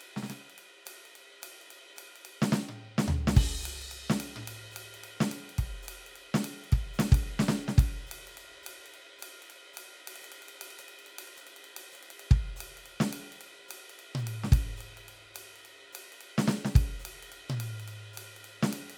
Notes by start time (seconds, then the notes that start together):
0.01 ride
0.16 snare
0.23 snare, hi-hat pedal
0.29 snare, ride
0.50 ride
0.58 ride
0.85 hi-hat pedal, ride
1.05 ride
1.42 hi-hat pedal, ride
1.62 ride
1.71 ride
1.96 hi-hat pedal, ride
2.16 ride
2.25 ride
2.42 snare, hi-hat pedal
2.52 snare
2.69 high tom
2.98 snare, hi-hat pedal
3.06 kick, floor tom
3.19 hi-hat pedal
3.27 snare
3.36 kick, crash
3.61 hi-hat pedal
3.66 ride
3.82 ride
3.91 ride
4.10 snare, hi-hat pedal
4.20 ride
4.36 high tom
4.48 ride
4.72 hi-hat pedal
4.76 ride
4.94 ride
5.04 ride
5.21 snare, hi-hat pedal
5.32 ride
5.49 ride
5.58 kick, ride
5.83 hi-hat pedal
5.88 ride
6.07 ride
6.16 ride
6.34 snare, hi-hat pedal
6.45 ride
6.64 ride
6.72 kick, ride
6.94 hi-hat pedal
6.99 snare, ride
7.12 kick, ride
7.39 snare, hi-hat pedal
7.48 snare
7.68 snare
7.78 kick, ride
8.07 hi-hat pedal
8.12 ride
8.27 ride
8.63 hi-hat pedal, ride
8.86 ride
8.94 ride
9.19 hi-hat pedal, ride
9.42 ride
9.50 ride
9.73 hi-hat pedal, ride
10.08 ride
10.16 ride
10.21 hi-hat pedal, ride
10.32 ride
10.42 ride
10.49 ride
10.61 ride
10.71 ride
10.79 hi-hat pedal, ride
10.88 ride
10.99 ride
11.06 ride
11.19 ride
11.28 ride
11.37 hi-hat pedal, ride
11.47 ride
11.57 ride
11.64 ride
11.77 ride
11.92 hi-hat pedal, ride
12.03 ride
12.10 ride
12.20 ride
12.31 kick
12.56 hi-hat pedal
12.61 ride
12.77 ride
12.86 ride
13.00 snare
13.06 hi-hat pedal
13.13 ride
13.32 ride
13.41 ride
13.68 hi-hat pedal, ride
13.90 ride
13.99 ride
14.15 hi-hat pedal, high tom
14.27 ride
14.44 snare
14.52 kick, ride
14.77 hi-hat pedal, ride
14.97 ride
15.08 ride
15.34 hi-hat pedal, ride
15.56 ride
15.65 ride
15.93 hi-hat pedal, ride
16.12 ride
16.21 ride
16.38 snare, hi-hat pedal
16.48 snare
16.65 snare
16.75 kick, ride
17.00 hi-hat pedal
17.05 ride
17.23 ride
17.32 ride
17.49 hi-hat pedal, high tom
17.60 ride
17.80 ride
17.88 ride
18.13 hi-hat pedal
18.18 ride
18.37 ride
18.45 ride
18.63 snare, hi-hat pedal
18.73 ride
18.90 ride